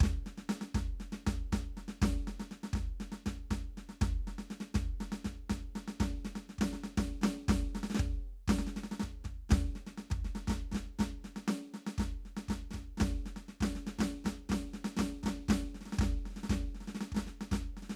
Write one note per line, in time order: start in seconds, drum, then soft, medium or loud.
0.01 kick loud
0.01 snare medium
0.27 snare soft
0.38 snare soft
0.50 snare medium
0.62 snare soft
0.75 kick medium
0.75 snare medium
1.01 snare soft
1.13 snare soft
1.27 kick medium
1.27 snare medium
1.53 kick medium
1.53 snare medium
1.77 snare soft
1.89 snare soft
2.02 kick medium
2.02 snare medium
2.28 snare soft
2.40 snare soft
2.52 snare soft
2.64 snare soft
2.74 kick medium
2.74 snare medium
3.01 snare soft
3.12 snare soft
3.26 kick medium
3.26 snare medium
3.51 kick medium
3.51 snare medium
3.78 snare soft
3.89 snare soft
4.02 kick loud
4.02 snare medium
4.28 snare soft
4.39 snare soft
4.51 snare soft
4.75 kick medium
4.75 snare medium
5.01 snare soft
5.12 snare medium
5.25 kick soft
5.25 snare medium
5.50 kick medium
5.50 snare medium
5.76 snare soft
5.88 snare soft
6.01 kick medium
6.01 snare medium
6.25 snare soft
6.36 snare soft
6.50 snare soft
6.59 kick soft
6.59 snare medium
6.74 snare soft
6.84 snare soft
6.98 kick medium
6.98 snare medium
7.22 snare soft
7.24 snare loud
7.49 kick medium
7.49 snare medium
7.75 snare medium
7.84 snare medium
7.90 snare medium
7.95 snare medium
8.00 kick medium
8.48 kick medium
8.48 snare loud
8.59 snare soft
8.67 snare soft
8.77 snare soft
8.84 snare soft
8.92 snare soft
9.00 kick soft
9.00 snare medium
9.25 kick soft
9.25 snare soft
9.50 kick loud
9.50 snare soft
9.50 snare medium
9.76 snare soft
9.87 snare soft
9.98 snare soft
10.11 kick medium
10.11 snare soft
10.25 snare soft
10.36 snare soft
10.48 kick medium
10.48 snare soft
10.50 snare medium
10.72 kick soft
10.72 snare soft
10.75 snare medium
10.99 kick medium
10.99 snare medium
11.25 snare soft
11.37 snare soft
11.48 snare medium
11.74 snare soft
11.87 snare medium
11.99 kick medium
11.99 snare medium
12.26 snare soft
12.37 snare medium
12.49 kick medium
12.49 snare medium
12.71 snare soft
12.74 kick soft
12.74 snare soft
12.98 snare soft
13.01 kick medium
13.01 snare medium
13.26 snare soft
13.37 snare soft
13.49 snare soft
13.61 kick medium
13.61 snare soft
13.61 snare medium
13.76 snare soft
13.87 snare medium
13.99 kick soft
13.99 snare medium
14.01 snare medium
14.25 kick soft
14.25 snare soft
14.26 snare medium
14.50 kick medium
14.50 snare medium
14.52 snare medium
14.74 snare soft
14.85 snare medium
14.97 kick soft
14.97 snare medium
14.99 snare medium
15.24 kick soft
15.24 snare soft
15.26 snare medium
15.49 kick medium
15.49 snare medium
15.49 snare loud
15.75 snare soft
15.81 snare soft
15.86 snare soft
15.93 snare medium
15.97 kick loud
15.97 snare soft
16.02 snare medium
16.26 snare soft
16.31 snare soft
16.37 snare soft
16.44 snare soft
16.50 kick medium
16.50 snare medium
16.75 snare soft
16.81 snare soft
16.88 snare soft
16.95 snare soft
17.01 snare medium
17.12 kick soft
17.12 snare soft
17.17 snare medium
17.27 snare soft
17.41 snare soft
17.52 kick medium
17.52 snare medium
17.77 snare soft
17.83 snare soft
17.90 snare medium